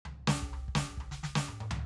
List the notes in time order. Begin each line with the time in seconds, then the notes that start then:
0.05 floor tom
0.27 snare, floor tom
0.42 kick
0.53 floor tom
0.68 kick
0.75 snare, floor tom
0.97 kick, floor tom
1.11 snare
1.23 snare
1.35 snare
1.48 high tom
1.60 high tom
1.71 floor tom